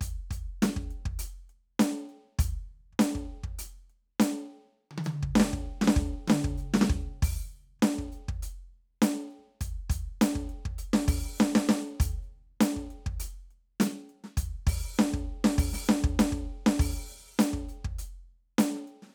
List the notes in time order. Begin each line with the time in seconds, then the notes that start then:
0.01 closed hi-hat, kick
0.31 closed hi-hat, kick
0.62 closed hi-hat, snare
0.77 kick
0.91 closed hi-hat
1.06 kick
1.19 closed hi-hat
1.50 closed hi-hat
1.80 closed hi-hat, snare
2.09 closed hi-hat
2.39 closed hi-hat, kick
2.93 kick
2.99 closed hi-hat, snare
3.15 kick
3.44 kick
3.48 crash
3.59 closed hi-hat
3.90 closed hi-hat
4.20 closed hi-hat, snare
4.91 high tom
4.98 high tom
5.04 hi-hat pedal, high tom
5.23 kick
5.36 snare, hi-hat pedal
5.40 snare
5.53 kick
5.82 snare
5.88 snare
5.96 kick
6.28 snare, hi-hat pedal, high tom
6.44 kick
6.58 hi-hat pedal
6.74 snare
6.81 snare
6.90 kick
7.23 open hi-hat, kick
7.79 open hi-hat, kick, snare, hi-hat pedal
7.99 kick
8.12 closed hi-hat
8.29 kick, crash
8.43 closed hi-hat
9.02 closed hi-hat, snare
9.31 closed hi-hat
9.38 kick
9.61 closed hi-hat, kick
9.90 closed hi-hat, kick
10.21 closed hi-hat, snare
10.36 kick
10.49 closed hi-hat
10.65 kick
10.78 closed hi-hat
10.94 snare
11.08 open hi-hat, kick
11.38 snare, hi-hat pedal
11.55 snare
11.69 snare
12.00 closed hi-hat, kick
12.22 hi-hat pedal
12.61 closed hi-hat, snare
12.77 kick
12.91 closed hi-hat
13.06 kick, crash
13.20 closed hi-hat
13.51 closed hi-hat
13.80 closed hi-hat, snare
14.09 closed hi-hat
14.24 snare
14.37 closed hi-hat, kick
14.67 open hi-hat, kick
14.98 snare, hi-hat pedal
15.14 kick
15.44 snare
15.58 open hi-hat, kick
15.73 open hi-hat, snare
15.87 snare, hi-hat pedal
16.04 kick
16.19 open hi-hat, snare, hi-hat pedal
16.32 kick
16.66 snare
16.80 open hi-hat, kick
17.28 kick
17.39 closed hi-hat, snare, hi-hat pedal
17.53 kick
17.69 closed hi-hat
17.85 kick
17.99 closed hi-hat
18.59 closed hi-hat, snare
18.75 snare
18.88 closed hi-hat
19.02 snare
19.07 snare
19.09 snare